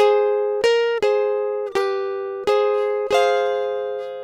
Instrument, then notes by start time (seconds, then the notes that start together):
acoustic guitar
0.01 G#4 C5
0.66 A#4 C5
1.04 G#4 C5
1.77 G4 B4
2.49 G#4 C5
3.13 G#4 C5 F5